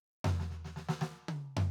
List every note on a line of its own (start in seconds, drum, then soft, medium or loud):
0.24 snare medium
0.24 floor tom loud
0.40 snare medium
0.51 snare soft
0.64 snare medium
0.76 snare medium
0.89 snare loud
1.01 snare medium
1.28 high tom loud
1.57 floor tom loud